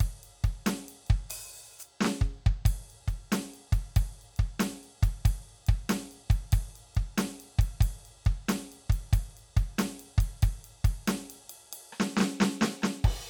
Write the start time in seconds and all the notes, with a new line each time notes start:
0.01 kick, ride
0.24 ride
0.44 kick, ride
0.67 snare, ride
0.89 ride
1.07 kick, ride
1.30 open hi-hat, ride
1.80 hi-hat pedal
2.01 snare
2.05 snare
2.22 kick
2.47 kick
2.66 kick, ride
2.91 ride
3.08 kick, ride
3.32 snare, ride
3.54 ride
3.73 kick, ride
3.97 kick, ride
4.22 ride
4.37 kick, ride
4.60 snare, ride
4.84 ride
5.03 kick, ride
5.26 kick, ride
5.67 kick, ride
5.90 snare, ride
6.12 ride
6.31 kick, ride
6.53 kick, ride
6.76 ride
6.96 kick, ride
7.18 snare, ride
7.41 ride
7.59 kick, ride
7.81 kick, ride
8.06 ride
8.26 kick, ride
8.49 snare, ride
8.72 ride
8.90 kick, ride
9.13 kick, ride
9.38 ride
9.57 kick, ride
9.79 snare, ride
10.00 ride
10.18 kick, ride
10.43 kick, ride
10.65 ride
10.85 kick, ride
11.08 snare, ride
11.31 ride
11.50 ride
11.73 ride
11.93 cross-stick
12.00 snare
12.17 snare
12.21 snare
12.41 snare
12.62 snare
12.83 cross-stick, snare
13.05 kick, crash